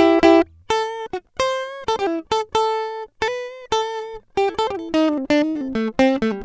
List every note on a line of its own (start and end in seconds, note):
0.00 0.24 E4
0.00 0.22 G4
0.24 0.48 E4
0.24 0.46 G4
0.71 0.88 A4
1.15 1.23 F#4
1.41 1.72 C5
1.90 1.99 A4
2.01 2.09 G4
2.09 2.26 E4
2.33 2.47 A4
2.56 3.10 A4
3.23 3.33 A4
3.33 3.53 B4
3.73 3.85 A4
4.39 4.49 G4
4.50 4.60 F4
4.60 4.69 A4
4.69 4.81 F#4
4.69 4.80 C5
4.80 4.99 E4
4.80 4.92 A4
4.95 5.09 D#4
5.10 5.19 D4
5.19 5.29 C4
5.31 5.43 D4
5.43 5.57 D#4
5.57 5.66 C#4
5.67 5.82 C4
5.77 5.95 A3
6.00 6.22 C4
6.23 6.37 A3